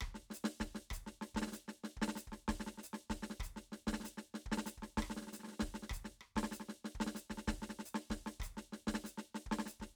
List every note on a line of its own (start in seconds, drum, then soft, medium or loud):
0.02 kick soft
0.02 cross-stick medium
0.15 snare soft
0.31 snare soft
0.31 hi-hat pedal medium
0.45 snare medium
0.61 kick soft
0.61 snare medium
0.76 snare soft
0.91 kick soft
0.91 cross-stick medium
0.91 hi-hat pedal medium
1.07 snare soft
1.22 snare soft
1.35 kick soft
1.35 snare medium
1.43 snare medium
1.48 snare soft
1.53 snare soft
1.53 hi-hat pedal medium
1.69 snare soft
1.85 snare soft
1.98 kick soft
2.02 snare medium
2.09 snare medium
2.16 snare soft
2.16 hi-hat pedal medium
2.28 kick soft
2.33 snare soft
2.49 kick soft
2.49 snare medium
2.61 snare soft
2.67 snare soft
2.75 snare soft
2.78 snare soft
2.84 hi-hat pedal medium
2.94 snare soft
3.11 kick soft
3.11 snare medium
3.23 snare soft
3.31 snare soft
3.40 kick soft
3.40 cross-stick medium
3.40 hi-hat pedal medium
3.48 kick soft
3.57 snare soft
3.73 snare soft
3.88 kick soft
3.88 snare medium
3.94 snare medium
4.01 snare soft
4.04 snare soft
4.04 hi-hat pedal medium
4.18 snare soft
4.35 snare soft
4.47 kick soft
4.52 snare medium
4.58 snare medium
4.67 snare soft
4.67 hi-hat pedal medium
4.78 kick soft
4.83 snare soft
4.98 kick soft
4.98 snare medium
5.03 cross-stick medium
5.11 snare soft
5.17 snare soft
5.22 snare soft
5.28 snare soft
5.33 snare soft
5.33 hi-hat pedal medium
5.40 snare soft
5.44 snare soft
5.48 snare soft
5.53 snare soft
5.60 kick soft
5.60 snare medium
5.75 snare soft
5.83 snare soft
5.90 kick soft
5.90 cross-stick medium
5.90 hi-hat pedal medium
6.05 snare soft
6.22 cross-stick soft
6.36 kick soft
6.36 snare medium
6.44 snare medium
6.52 snare soft
6.52 hi-hat pedal medium
6.61 snare soft
6.69 snare soft
6.85 snare soft
6.96 kick soft
7.01 snare medium
7.07 snare medium
7.16 snare soft
7.16 hi-hat pedal medium
7.31 kick soft
7.31 snare soft
7.38 snare soft
7.48 kick soft
7.48 snare medium
7.63 snare soft
7.70 snare soft
7.80 snare soft
7.86 hi-hat pedal medium
7.95 snare medium
8.11 kick soft
8.11 snare medium
8.27 snare soft
8.41 kick soft
8.41 cross-stick medium
8.41 hi-hat pedal medium
8.58 snare soft
8.73 snare soft
8.88 kick soft
8.88 snare medium
8.95 snare medium
9.05 snare soft
9.05 hi-hat pedal medium
9.18 snare soft
9.35 snare soft
9.47 kick soft
9.52 snare medium
9.60 snare medium
9.67 snare soft
9.67 hi-hat pedal medium
9.81 kick soft
9.81 snare soft